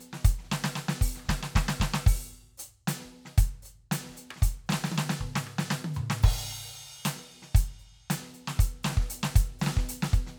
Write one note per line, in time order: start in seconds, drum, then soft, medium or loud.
0.01 closed hi-hat medium
0.13 snare medium
0.25 closed hi-hat loud
0.25 kick loud
0.39 snare soft
0.44 snare soft
0.49 snare soft
0.52 snare loud
0.64 snare loud
0.76 snare loud
0.89 snare loud
1.02 open hi-hat loud
1.02 kick loud
1.16 snare soft
1.20 cross-stick soft
1.23 cross-stick soft
1.23 snare soft
1.23 hi-hat pedal soft
1.29 kick medium
1.29 snare loud
1.43 snare medium
1.56 kick loud
1.56 snare loud
1.69 snare loud
1.80 kick medium
1.80 snare loud
1.94 snare loud
2.07 open hi-hat loud
2.07 kick loud
2.58 closed hi-hat loud
2.58 hi-hat pedal medium
2.88 closed hi-hat loud
2.88 snare loud
3.01 snare soft
3.04 kick soft
3.04 snare soft
3.26 snare medium
3.38 closed hi-hat loud
3.38 kick loud
3.63 closed hi-hat medium
3.63 hi-hat pedal medium
3.92 closed hi-hat loud
3.92 snare loud
4.05 snare soft
4.09 kick soft
4.09 snare soft
4.12 snare soft
4.14 snare soft
4.16 closed hi-hat medium
4.16 snare soft
4.31 cross-stick medium
4.36 snare soft
4.43 closed hi-hat loud
4.43 kick loud
4.67 snare loud
4.67 hi-hat pedal soft
4.73 snare loud
4.84 snare loud
4.92 hi-hat pedal medium
4.92 high tom loud
4.98 snare loud
5.10 snare loud
5.21 kick soft
5.21 mid tom medium
5.36 snare loud
5.47 cross-stick medium
5.59 snare loud
5.71 snare loud
5.85 high tom loud
5.94 hi-hat pedal medium
5.94 mid tom loud
6.10 snare loud
6.23 kick loud
6.23 crash loud
7.05 closed hi-hat loud
7.05 snare loud
7.16 snare soft
7.20 snare soft
7.32 closed hi-hat soft
7.43 snare soft
7.55 closed hi-hat loud
7.55 kick loud
7.79 hi-hat pedal soft
8.10 closed hi-hat loud
8.10 snare loud
8.22 snare soft
8.24 snare soft
8.27 snare soft
8.29 snare soft
8.34 closed hi-hat soft
8.48 snare loud
8.56 kick loud
8.56 snare soft
8.61 closed hi-hat loud
8.84 snare loud
8.84 hi-hat pedal medium
8.90 snare medium
8.97 kick loud
8.97 snare medium
9.04 snare soft
9.09 closed hi-hat loud
9.09 snare soft
9.23 snare loud
9.36 closed hi-hat loud
9.36 kick loud
9.42 snare soft
9.59 snare loud
9.59 hi-hat pedal medium
9.67 snare loud
9.77 kick medium
9.77 snare medium
9.83 snare soft
9.89 closed hi-hat loud
9.89 snare soft
10.03 snare loud
10.14 closed hi-hat medium
10.14 kick loud
10.27 snare medium